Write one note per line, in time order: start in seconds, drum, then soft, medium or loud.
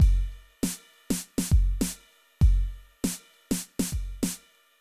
0.01 kick loud
0.01 ride bell loud
0.32 ride bell soft
0.64 snare loud
0.64 ride bell loud
0.94 ride bell soft
1.11 snare loud
1.39 snare loud
1.52 kick loud
1.52 ride bell medium
1.81 snare loud
1.81 ride bell medium
2.13 ride soft
2.42 kick loud
2.42 ride bell medium
2.74 ride soft
3.04 snare loud
3.04 ride bell medium
3.34 ride bell soft
3.52 snare loud
3.80 snare loud
3.93 kick medium
3.93 ride bell medium
4.23 snare loud
4.23 ride bell medium
4.55 ride soft